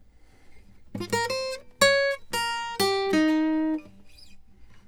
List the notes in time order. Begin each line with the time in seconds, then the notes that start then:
1.14 A#4
1.31 C5
1.82 C#5
2.34 A#4
2.80 G4
3.14 D#4